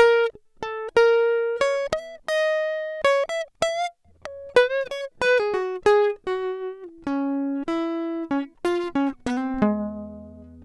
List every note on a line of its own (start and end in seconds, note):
0.00 0.33 A#4
0.64 0.92 A4
0.98 1.60 A#4
1.62 1.90 C#5
1.94 2.20 E5
2.30 3.04 D#5
3.06 3.27 C#5
3.31 3.48 E5
3.64 3.83 E5
4.58 4.78 B4
4.72 4.90 C#5
4.93 5.10 C#5
5.23 5.39 B4
5.40 5.67 G#4
5.55 5.83 F#4
5.88 6.22 G#4
6.28 6.85 F#4
6.86 7.12 E4
7.08 7.67 C#4
7.69 8.31 E4
8.32 8.50 C#4
8.66 8.96 F4
8.97 9.16 C#4
9.28 9.48 B3
9.48 9.74 C4
9.64 10.30 G#3